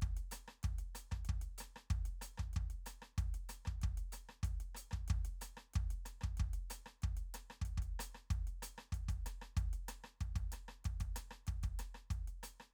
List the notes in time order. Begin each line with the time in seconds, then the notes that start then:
0.01 kick, closed hi-hat
0.17 closed hi-hat
0.31 closed hi-hat, cross-stick
0.48 cross-stick
0.63 kick, closed hi-hat
0.78 closed hi-hat
0.95 closed hi-hat, cross-stick
1.11 kick, cross-stick
1.25 closed hi-hat
1.29 kick
1.41 closed hi-hat
1.58 closed hi-hat, cross-stick
1.76 cross-stick
1.90 kick, closed hi-hat
2.05 closed hi-hat
2.21 closed hi-hat, cross-stick
2.38 kick, cross-stick
2.53 kick, closed hi-hat
2.70 closed hi-hat
2.86 closed hi-hat, cross-stick
3.02 cross-stick
3.18 kick, closed hi-hat
3.34 closed hi-hat
3.49 closed hi-hat, cross-stick
3.65 kick, cross-stick
3.82 kick, closed hi-hat
3.97 closed hi-hat
4.12 closed hi-hat, cross-stick
4.29 cross-stick
4.43 kick, closed hi-hat
4.60 closed hi-hat
4.75 closed hi-hat, cross-stick
4.91 kick, cross-stick
5.08 kick, closed hi-hat
5.25 closed hi-hat
5.41 closed hi-hat, cross-stick
5.57 cross-stick
5.74 kick, closed hi-hat
5.90 closed hi-hat
6.05 cross-stick, closed hi-hat
6.21 kick, cross-stick
6.37 kick, closed hi-hat
6.53 closed hi-hat
6.70 closed hi-hat, cross-stick
6.86 cross-stick
7.02 kick, closed hi-hat
7.17 closed hi-hat
7.34 cross-stick, closed hi-hat
7.50 cross-stick
7.61 kick, closed hi-hat
7.77 kick
7.82 closed hi-hat
7.99 closed hi-hat, cross-stick
8.14 cross-stick
8.30 kick, closed hi-hat
8.47 closed hi-hat
8.62 closed hi-hat, cross-stick
8.78 cross-stick
8.92 kick, closed hi-hat
9.08 kick, closed hi-hat
9.26 cross-stick, closed hi-hat
9.41 cross-stick
9.57 kick, closed hi-hat
9.73 closed hi-hat
9.88 cross-stick, closed hi-hat
10.04 cross-stick
10.20 kick, closed hi-hat
10.36 kick, closed hi-hat
10.52 cross-stick, closed hi-hat
10.68 cross-stick
10.84 kick, closed hi-hat
11.00 kick, closed hi-hat
11.16 cross-stick, closed hi-hat
11.31 cross-stick
11.47 kick, closed hi-hat
11.63 kick, closed hi-hat
11.79 cross-stick, closed hi-hat
11.94 cross-stick
12.10 kick, closed hi-hat
12.27 closed hi-hat
12.43 closed hi-hat, cross-stick
12.60 cross-stick